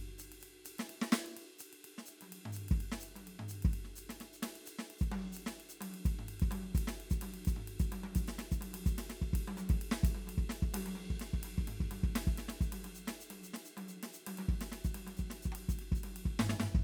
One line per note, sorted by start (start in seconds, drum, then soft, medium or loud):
0.18 hi-hat pedal medium
0.18 ride medium
0.32 ride medium
0.40 hi-hat pedal soft
0.40 ride medium
0.65 hi-hat pedal medium
0.65 ride medium
0.79 snare medium
0.79 ride medium
0.89 ride medium
1.01 snare medium
1.12 snare loud
1.12 hi-hat pedal medium
1.12 ride medium
1.26 ride soft
1.37 ride medium
1.58 hi-hat pedal medium
1.58 ride medium
1.73 ride soft
1.84 ride medium
1.98 snare soft
2.05 hi-hat pedal medium
2.05 ride soft
2.21 high tom soft
2.21 ride medium
2.32 ride medium
2.45 floor tom medium
2.52 hi-hat pedal medium
2.57 ride medium
2.68 kick medium
2.68 ride medium
2.80 ride medium
2.92 snare medium
3.00 hi-hat pedal medium
3.00 ride medium
3.16 high tom medium
3.16 ride soft
3.27 ride medium
3.39 floor tom medium
3.48 hi-hat pedal medium
3.48 ride medium
3.62 kick medium
3.62 ride medium
3.70 hi-hat pedal soft
3.70 ride medium
3.84 snare soft
3.96 hi-hat pedal medium
3.96 ride medium
4.09 snare soft
4.09 ride medium
4.20 snare soft
4.20 ride medium
4.33 hi-hat pedal medium
4.42 snare medium
4.42 ride medium
4.55 ride soft
4.66 hi-hat pedal medium
4.66 ride medium
4.79 snare medium
4.90 ride medium
4.98 kick medium
4.98 hi-hat pedal medium
5.03 ride soft
5.12 high tom medium
5.12 ride soft
5.32 hi-hat pedal medium
5.37 ride medium
5.46 snare medium
5.46 ride medium
5.60 ride soft
5.69 hi-hat pedal medium
5.81 high tom medium
5.81 ride medium
5.94 ride soft
6.05 kick medium
6.05 hi-hat pedal medium
6.05 ride medium
6.19 floor tom medium
6.28 ride medium
6.40 kick medium
6.40 ride medium
6.51 high tom medium
6.51 ride medium
6.75 kick medium
6.75 hi-hat pedal medium
6.75 ride medium
6.87 snare medium
6.87 ride medium
7.00 ride soft
7.10 kick medium
7.10 hi-hat pedal medium
7.21 high tom medium
7.21 ride medium
7.34 ride medium
7.45 kick medium
7.45 hi-hat pedal medium
7.45 ride medium
7.56 floor tom medium
7.67 ride medium
7.79 kick medium
7.79 hi-hat pedal medium
7.79 ride medium
7.92 high tom medium
7.92 ride medium
8.03 high tom medium
8.15 kick medium
8.15 hi-hat pedal medium
8.15 ride medium
8.28 snare medium
8.28 ride medium
8.38 snare medium
8.38 ride medium
8.51 kick medium
8.51 hi-hat pedal medium
8.61 high tom medium
8.61 ride medium
8.73 high tom soft
8.73 ride medium
8.86 kick medium
8.86 hi-hat pedal medium
8.98 snare medium
8.98 ride medium
9.09 snare soft
9.09 ride medium
9.22 kick medium
9.33 kick medium
9.33 ride medium
9.48 high tom medium
9.57 hi-hat pedal medium
9.57 high tom medium
9.69 kick medium
9.69 ride medium
9.81 ride medium
9.91 snare medium
10.03 kick medium
10.03 hi-hat pedal medium
10.03 ride medium
10.15 high tom medium
10.27 high tom soft
10.27 ride medium
10.38 kick medium
10.49 snare medium
10.49 ride medium
10.62 kick medium
10.74 high tom medium
10.74 ride loud
10.86 high tom medium
10.86 ride medium
10.95 high tom medium
10.95 ride soft
11.10 kick medium
11.20 snare medium
11.20 ride medium
11.33 kick medium
11.43 high tom soft
11.43 ride medium
11.58 kick medium
11.67 floor tom medium
11.67 ride medium
11.80 kick medium
11.91 high tom medium
11.91 ride medium
12.03 kick medium
12.15 snare medium
12.15 ride medium
12.27 kick medium
12.38 snare soft
12.38 ride medium
12.50 ride medium
12.61 kick medium
12.61 hi-hat pedal medium
12.72 high tom medium
12.72 ride medium
12.84 high tom soft
12.84 ride medium
12.95 hi-hat pedal medium
13.07 snare medium
13.07 ride medium
13.20 hi-hat pedal medium
13.30 high tom medium
13.30 ride medium
13.43 hi-hat pedal medium
13.54 snare medium
13.54 ride medium
13.65 hi-hat pedal medium
13.77 high tom medium
13.77 ride medium
13.88 hi-hat pedal medium
14.03 snare medium
14.03 ride medium
14.13 hi-hat pedal medium
14.27 high tom medium
14.27 ride medium
14.37 high tom medium
14.37 ride medium
14.48 kick medium
14.61 snare medium
14.61 ride medium
14.72 snare medium
14.72 ride medium
14.84 kick medium
14.84 hi-hat pedal medium
14.94 high tom medium
14.94 ride medium
15.07 high tom medium
15.07 ride medium
15.17 kick soft
15.17 hi-hat pedal medium
15.30 snare soft
15.30 ride medium
15.42 kick medium
15.42 hi-hat pedal medium
15.52 high tom soft
15.52 ride medium
15.69 kick medium
15.69 hi-hat pedal medium
15.79 snare soft
15.79 ride medium
15.92 kick medium
15.92 hi-hat pedal medium
16.03 high tom medium
16.03 ride medium
16.16 ride medium
16.25 kick medium
16.39 snare loud
16.39 floor tom loud
16.53 floor tom medium
16.60 snare medium
16.60 floor tom medium
16.75 kick medium